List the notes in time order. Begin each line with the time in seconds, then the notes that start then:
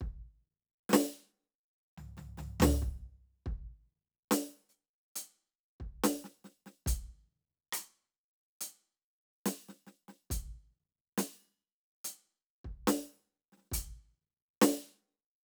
0.01 kick
0.89 snare
0.93 snare
1.98 snare, floor tom
2.17 snare, floor tom
2.38 snare, floor tom
2.60 snare, floor tom
2.82 kick
3.46 kick
4.31 closed hi-hat, snare
4.69 hi-hat pedal
5.16 closed hi-hat
5.80 kick
6.04 closed hi-hat, snare
6.24 snare
6.44 snare
6.66 snare
6.86 closed hi-hat, kick
7.06 kick
7.73 closed hi-hat, cross-stick
8.61 closed hi-hat
9.46 closed hi-hat, snare
9.54 closed hi-hat
9.69 snare
9.87 snare
10.08 snare
10.30 closed hi-hat, kick
11.18 closed hi-hat, snare
12.05 closed hi-hat
12.65 kick
12.87 closed hi-hat, snare
13.52 snare
13.58 snare
13.61 snare
13.65 snare
13.72 closed hi-hat, kick
14.62 closed hi-hat, snare